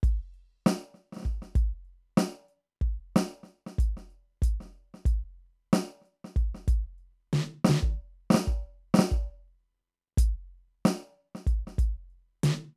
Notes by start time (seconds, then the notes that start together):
0.03 closed hi-hat, kick
0.07 crash
0.34 closed hi-hat
0.66 snare, closed hi-hat
0.94 snare, closed hi-hat
1.12 snare
1.16 snare
1.20 snare
1.22 kick, snare, closed hi-hat
1.42 snare
1.55 kick, closed hi-hat
1.84 closed hi-hat
2.17 closed hi-hat, snare
2.48 closed hi-hat
2.81 kick, closed hi-hat
3.16 closed hi-hat, snare
3.43 snare
3.48 closed hi-hat
3.66 snare
3.78 kick, closed hi-hat
3.97 snare
4.10 closed hi-hat
4.41 closed hi-hat, kick
4.60 snare
4.65 snare
4.75 closed hi-hat
4.94 snare
5.05 kick, closed hi-hat
5.72 closed hi-hat, snare
6.01 snare, closed hi-hat
6.24 snare
6.36 kick, closed hi-hat
6.54 snare
6.67 closed hi-hat, kick
6.98 closed hi-hat
7.33 closed hi-hat, snare
7.64 snare
7.69 snare
7.82 kick
8.30 snare
8.34 snare
8.47 kick
8.94 snare
8.98 snare
9.11 kick
10.17 kick, closed hi-hat
10.85 closed hi-hat, snare
11.35 snare
11.46 kick, closed hi-hat
11.67 snare
11.78 kick, closed hi-hat
12.10 closed hi-hat
12.43 closed hi-hat, snare